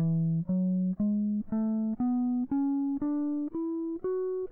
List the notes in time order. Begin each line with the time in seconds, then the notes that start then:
0.00 E3
0.50 F#3
1.00 G#3
1.52 A3
2.00 B3
2.52 C#4
3.02 D4
3.55 E4
4.04 F#4